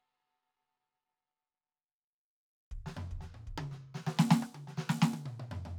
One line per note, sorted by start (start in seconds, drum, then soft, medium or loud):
2.72 kick soft
2.87 snare medium
2.97 floor tom medium
3.12 kick soft
3.21 snare soft
3.35 mid tom medium
3.48 kick soft
3.58 high tom medium
3.72 snare soft
3.95 snare medium
4.07 snare medium
4.20 snare loud
4.31 snare loud
4.43 cross-stick medium
4.55 high tom medium
4.68 snare soft
4.90 snare loud
5.03 snare loud
5.14 high tom medium
5.26 mid tom medium
5.40 mid tom medium
5.52 floor tom medium
5.66 floor tom medium